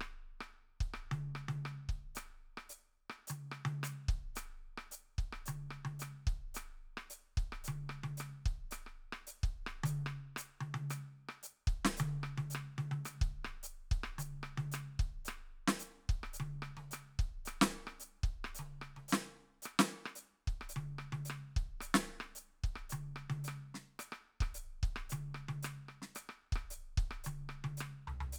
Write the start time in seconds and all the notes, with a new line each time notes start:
0.01 cross-stick
0.41 cross-stick
0.81 kick
0.94 cross-stick
1.12 high tom
1.35 cross-stick
1.49 high tom
1.66 cross-stick
1.89 kick
2.15 cross-stick, hi-hat pedal
2.58 cross-stick
2.70 hi-hat pedal
3.10 cross-stick
3.27 hi-hat pedal, high tom
3.52 cross-stick
3.65 high tom
3.83 cross-stick, hi-hat pedal
4.09 kick
4.36 cross-stick, hi-hat pedal
4.78 cross-stick
4.92 hi-hat pedal
5.18 kick
5.33 cross-stick
5.46 hi-hat pedal, high tom
5.71 cross-stick
5.85 high tom
6.00 cross-stick, hi-hat pedal
6.27 kick
6.55 cross-stick, hi-hat pedal
6.97 cross-stick
7.10 hi-hat pedal
7.37 kick
7.52 cross-stick
7.64 hi-hat pedal, high tom
7.90 cross-stick
8.04 high tom
8.17 cross-stick, hi-hat pedal
8.46 kick
8.71 cross-stick, hi-hat pedal
8.87 cross-stick
9.13 cross-stick
9.27 hi-hat pedal
9.44 kick
9.67 cross-stick
9.84 hi-hat pedal, high tom
10.06 cross-stick
10.36 cross-stick, hi-hat pedal
10.61 high tom
10.74 high tom
10.90 cross-stick, hi-hat pedal
11.29 cross-stick
11.43 hi-hat pedal
11.67 kick
11.85 snare
11.97 hi-hat pedal, high tom
12.24 cross-stick
12.38 high tom
12.50 hi-hat pedal
12.55 cross-stick
12.78 high tom
12.91 high tom
13.05 cross-stick, hi-hat pedal
13.22 kick
13.45 cross-stick
13.63 hi-hat pedal
13.91 kick
14.04 cross-stick
14.19 hi-hat pedal, high tom
14.43 cross-stick
14.58 high tom
14.72 cross-stick, hi-hat pedal
15.00 kick
15.25 cross-stick, hi-hat pedal
15.68 snare
15.80 hi-hat pedal
16.09 kick
16.24 cross-stick
16.34 hi-hat pedal
16.40 high tom
16.62 cross-stick
16.77 high tom
16.91 cross-stick, hi-hat pedal
17.19 kick
17.46 cross-stick, hi-hat pedal
17.62 snare
17.87 cross-stick
18.00 hi-hat pedal
18.24 kick
18.45 cross-stick
18.55 hi-hat pedal
18.59 high tom
18.82 cross-stick
18.97 high tom
19.09 hi-hat pedal
19.13 snare
19.62 cross-stick, hi-hat pedal
19.79 snare
20.06 cross-stick
20.16 hi-hat pedal
20.48 kick
20.61 cross-stick
20.69 hi-hat pedal
20.76 high tom
20.99 cross-stick
21.13 high tom
21.25 hi-hat pedal
21.30 cross-stick
21.57 kick
21.81 cross-stick, hi-hat pedal
21.95 snare
22.20 cross-stick
22.35 hi-hat pedal
22.64 kick
22.76 cross-stick
22.90 hi-hat pedal, high tom
23.16 cross-stick
23.30 high tom
23.44 cross-stick, hi-hat pedal
23.75 snare
23.99 cross-stick, hi-hat pedal
24.12 cross-stick
24.41 kick, cross-stick
24.55 hi-hat pedal
24.83 kick
24.96 cross-stick
25.10 hi-hat pedal, high tom
25.35 cross-stick
25.49 high tom
25.63 cross-stick, hi-hat pedal
25.89 cross-stick
26.02 snare
26.15 cross-stick, hi-hat pedal
26.29 cross-stick
26.52 kick, cross-stick
26.71 hi-hat pedal
26.98 kick
27.11 cross-stick
27.24 hi-hat pedal, high tom
27.49 cross-stick
27.64 high tom
27.77 cross-stick, hi-hat pedal
28.08 floor tom
28.21 floor tom
28.33 hi-hat pedal